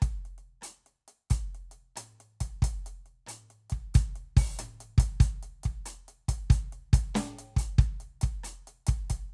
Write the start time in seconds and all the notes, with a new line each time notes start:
0.00 kick, cross-stick, closed hi-hat
0.25 closed hi-hat
0.38 closed hi-hat
0.61 closed hi-hat, cross-stick
0.86 closed hi-hat
1.08 closed hi-hat
1.30 closed hi-hat, kick
1.55 closed hi-hat
1.71 closed hi-hat
1.96 cross-stick, closed hi-hat, high tom
2.20 closed hi-hat
2.40 kick, closed hi-hat
2.62 kick, closed hi-hat
2.86 closed hi-hat
3.06 closed hi-hat
3.27 closed hi-hat, cross-stick, high tom
3.50 closed hi-hat
3.70 kick, closed hi-hat
3.94 closed hi-hat, kick
4.16 closed hi-hat
4.37 open hi-hat, kick
4.56 cross-stick, closed hi-hat, hi-hat pedal, high tom
4.80 closed hi-hat
4.98 kick, closed hi-hat
5.20 closed hi-hat, kick
5.43 closed hi-hat
5.63 kick, closed hi-hat
5.86 closed hi-hat, cross-stick
6.08 closed hi-hat
6.28 kick, closed hi-hat
6.50 closed hi-hat, kick
6.72 closed hi-hat
6.93 kick, closed hi-hat
7.15 closed hi-hat, snare, high tom
7.20 cross-stick
7.39 closed hi-hat
7.57 closed hi-hat, kick
7.78 closed hi-hat, kick
8.00 closed hi-hat
8.21 kick, closed hi-hat
8.44 closed hi-hat, cross-stick
8.67 closed hi-hat
8.87 kick, closed hi-hat
9.10 kick, closed hi-hat